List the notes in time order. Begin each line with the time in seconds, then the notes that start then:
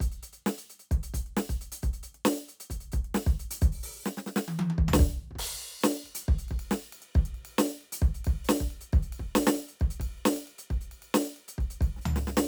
0.01 closed hi-hat, kick
0.12 closed hi-hat
0.23 closed hi-hat
0.47 snare
0.59 closed hi-hat
0.70 closed hi-hat
0.80 closed hi-hat
0.92 kick, closed hi-hat
1.04 closed hi-hat
1.14 closed hi-hat, kick
1.27 closed hi-hat
1.37 snare
1.50 closed hi-hat, kick
1.62 closed hi-hat
1.72 closed hi-hat
1.83 closed hi-hat, kick
1.94 closed hi-hat
2.04 closed hi-hat
2.15 closed hi-hat
2.26 snare
2.38 closed hi-hat
2.49 closed hi-hat
2.61 closed hi-hat
2.71 closed hi-hat, kick
2.81 closed hi-hat
2.92 closed hi-hat, kick
3.05 closed hi-hat
3.15 snare
3.27 kick, closed hi-hat
3.40 closed hi-hat
3.51 closed hi-hat
3.62 closed hi-hat, kick
3.73 open hi-hat
3.84 open hi-hat
4.03 snare, hi-hat pedal
4.18 snare
4.27 snare
4.37 snare
4.49 high tom
4.60 high tom
4.71 high tom
4.79 kick
4.89 floor tom
4.94 snare
5.00 kick
5.09 hi-hat pedal
5.31 kick
5.36 kick, crash
5.62 ride
5.81 snare, hi-hat pedal
6.04 kick, ride
6.15 closed hi-hat
6.28 kick, ride
6.39 closed hi-hat
6.49 kick, ride
6.60 ride
6.72 snare
6.82 ride
6.93 ride
7.02 closed hi-hat
7.15 kick, ride
7.26 closed hi-hat
7.35 ride
7.46 ride
7.59 snare
7.81 ride
7.93 closed hi-hat
8.02 kick, ride
8.15 closed hi-hat
8.25 kick, ride
8.45 hi-hat pedal
8.50 snare, ride
8.61 kick
8.71 ride
8.81 closed hi-hat
8.93 kick, ride
9.03 closed hi-hat
9.13 ride
9.20 kick
9.36 snare
9.47 snare
9.57 ride
9.69 closed hi-hat
9.81 kick, ride
9.91 closed hi-hat
10.00 kick, ride
10.19 ride
10.26 snare
10.37 ride
10.48 ride
10.59 closed hi-hat
10.71 kick, ride
10.81 closed hi-hat
10.92 ride
11.03 ride
11.15 snare
11.26 ride
11.37 ride
11.49 closed hi-hat
11.59 kick, ride
11.71 closed hi-hat
11.81 kick, ride
11.97 snare
12.02 hi-hat pedal
12.06 floor tom
12.17 snare
12.28 snare
12.38 snare